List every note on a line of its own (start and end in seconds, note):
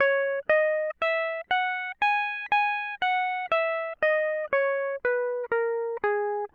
0.00 0.42 C#5
0.49 0.93 D#5
1.01 1.44 E5
1.51 1.94 F#5
2.02 2.48 G#5
2.52 2.99 G#5
3.02 3.48 F#5
3.51 3.96 E5
4.03 4.48 D#5
4.53 4.99 C#5
5.05 5.47 B4
5.52 5.99 A#4
6.04 6.47 G#4